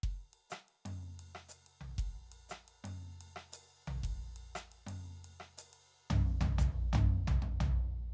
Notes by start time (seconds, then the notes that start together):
0.03 kick, ride
0.33 ride
0.50 cross-stick, hi-hat pedal
0.68 ride
0.85 mid tom, ride
1.19 ride
1.35 cross-stick
1.49 hi-hat pedal, ride
1.66 ride
1.81 floor tom
1.98 kick, ride
2.32 ride
2.49 cross-stick, hi-hat pedal
2.68 ride
2.84 mid tom, ride
3.21 ride
3.36 cross-stick
3.52 hi-hat pedal, ride
3.87 floor tom, ride
4.03 kick, ride
4.36 ride
4.55 cross-stick, hi-hat pedal
4.72 ride
4.86 mid tom, ride
5.24 ride
5.40 cross-stick
5.58 hi-hat pedal, ride
5.73 ride
6.10 floor tom, mid tom
6.41 floor tom, mid tom
6.58 floor tom, hi-hat pedal
6.93 floor tom, mid tom
7.27 floor tom
7.42 mid tom
7.60 floor tom